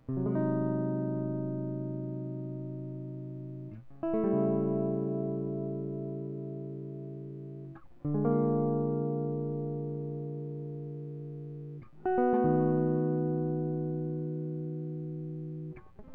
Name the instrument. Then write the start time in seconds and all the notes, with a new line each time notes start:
electric guitar
0.10 C3
0.18 F#3
0.27 G#3
0.36 D#4
4.04 E4
4.15 A3
4.25 G3
4.35 C#3
8.06 D3
8.16 G#3
8.26 A#3 F4
12.06 F#4
12.19 B3
12.38 A3
12.46 D#3